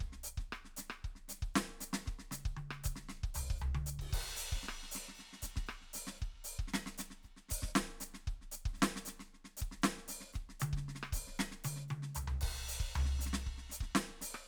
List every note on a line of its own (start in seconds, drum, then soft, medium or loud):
0.01 kick soft
0.01 snare soft
0.13 snare soft
0.24 snare soft
0.24 hi-hat pedal medium
0.38 kick soft
0.38 snare soft
0.53 cross-stick medium
0.65 snare soft
0.77 snare soft
0.77 hi-hat pedal medium
0.91 cross-stick medium
1.05 kick soft
1.05 snare soft
1.16 snare soft
1.29 snare soft
1.29 hi-hat pedal medium
1.31 snare soft
1.43 kick soft
1.55 snare medium
1.55 hi-hat pedal soft
1.69 snare soft
1.81 snare soft
1.81 hi-hat pedal medium
1.94 snare medium
2.07 kick soft
2.07 snare soft
2.19 snare soft
2.32 snare soft
2.32 hi-hat pedal medium
2.32 high tom soft
2.46 kick medium
2.57 high tom medium
2.71 cross-stick medium
2.84 kick soft
2.84 hi-hat pedal loud
2.84 high tom soft
2.96 snare soft
3.09 snare soft
3.24 kick medium
3.35 floor tom medium
3.35 hi-hat pedal medium
3.51 kick medium
3.59 floor tom medium
3.59 hi-hat pedal soft
3.75 high tom medium
3.87 hi-hat pedal medium
4.00 kick soft
4.00 ride medium
4.10 kick medium
4.10 hi-hat pedal soft
4.14 crash medium
4.37 hi-hat pedal medium
4.53 kick soft
4.53 snare soft
4.63 snare soft
4.69 cross-stick medium
4.84 snare soft
4.92 snare soft
4.92 hi-hat pedal loud
5.09 snare soft
5.15 hi-hat pedal soft
5.20 snare soft
5.33 snare soft
5.43 kick soft
5.43 snare soft
5.43 hi-hat pedal medium
5.56 kick soft
5.56 snare soft
5.67 cross-stick medium
5.67 hi-hat pedal soft
5.82 snare soft
5.94 snare soft
5.94 hi-hat pedal loud
6.07 snare soft
6.18 snare soft
6.18 hi-hat pedal soft
6.22 kick soft
6.36 snare soft
6.45 hi-hat pedal medium
6.59 kick soft
6.59 snare soft
6.68 snare soft
6.74 snare medium
6.87 snare soft
6.98 snare soft
6.98 hi-hat pedal medium
7.11 snare soft
7.23 kick soft
7.23 snare soft
7.23 hi-hat pedal soft
7.37 snare soft
7.49 kick soft
7.49 snare soft
7.49 hi-hat pedal loud
7.63 kick soft
7.63 snare soft
7.75 snare loud
7.75 hi-hat pedal soft
7.86 snare soft
7.89 snare soft
8.01 snare soft
8.01 hi-hat pedal medium
8.14 snare soft
8.28 kick soft
8.28 snare soft
8.42 snare soft
8.52 snare soft
8.52 hi-hat pedal medium
8.66 kick medium
8.66 snare soft
8.74 snare soft
8.74 hi-hat pedal soft
8.78 snare soft
8.83 snare loud
8.97 snare medium
9.06 snare soft
9.06 hi-hat pedal medium
9.20 snare soft
9.34 snare soft
9.45 snare soft
9.57 snare soft
9.57 hi-hat pedal medium
9.62 kick soft
9.72 snare soft
9.83 snare loud
9.83 hi-hat pedal soft
9.98 snare soft
10.08 kick soft
10.08 snare soft
10.08 hi-hat pedal medium
10.21 snare soft
10.33 kick soft
10.33 snare soft
10.33 hi-hat pedal soft
10.50 snare soft
10.60 hi-hat pedal medium
10.60 high tom loud
10.73 kick soft
10.73 snare soft
10.89 snare soft
10.96 snare soft
11.03 cross-stick medium
11.13 kick medium
11.13 snare soft
11.13 hi-hat pedal medium
11.28 snare soft
11.38 snare medium
11.38 hi-hat pedal soft
11.52 snare soft
11.64 hi-hat pedal medium
11.64 high tom medium
11.77 snare soft
11.89 hi-hat pedal soft
11.89 high tom medium
12.03 snare soft
12.15 floor tom medium
12.15 hi-hat pedal medium
12.28 floor tom medium
12.42 kick medium
12.42 crash medium
12.69 hi-hat pedal medium
12.80 kick medium
12.95 floor tom loud
12.95 hi-hat pedal soft
13.06 snare soft
13.20 snare soft
13.20 hi-hat pedal medium
13.26 snare soft
13.34 snare medium
13.47 kick soft
13.47 snare soft
13.58 snare soft
13.70 snare soft
13.70 hi-hat pedal medium
13.81 kick soft
13.81 snare soft
13.96 snare medium
13.96 hi-hat pedal soft
14.08 snare soft
14.22 kick soft
14.22 snare soft
14.22 hi-hat pedal loud
14.35 cross-stick medium